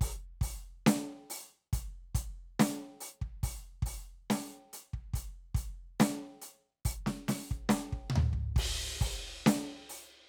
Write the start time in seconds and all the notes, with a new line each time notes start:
0.01 open hi-hat, kick
0.41 open hi-hat, kick
0.86 open hi-hat, snare
1.30 open hi-hat
1.73 open hi-hat, kick
2.15 open hi-hat, kick
2.59 open hi-hat, snare
3.01 open hi-hat
3.22 kick
3.43 open hi-hat, kick
3.82 open hi-hat, kick
4.30 open hi-hat, snare
4.36 cross-stick
4.73 open hi-hat
4.93 kick
5.14 open hi-hat, kick
5.55 open hi-hat, kick
6.00 open hi-hat, snare
6.42 open hi-hat
6.85 open hi-hat, kick
7.06 snare
7.28 open hi-hat, snare
7.51 kick
7.69 open hi-hat, snare
7.93 kick
8.10 high tom
8.16 floor tom
8.33 kick
8.56 kick, crash, ride
9.01 open hi-hat, kick
9.46 open hi-hat, snare
9.89 open hi-hat